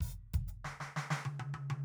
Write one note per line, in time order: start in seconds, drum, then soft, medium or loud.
0.00 kick soft
0.00 open hi-hat medium
0.11 hi-hat pedal soft
0.34 open hi-hat medium
0.34 kick medium
0.48 hi-hat pedal medium
0.64 snare medium
0.80 snare medium
0.96 snare medium
1.10 snare medium
1.25 high tom medium
1.39 high tom medium
1.54 high tom medium
1.70 high tom loud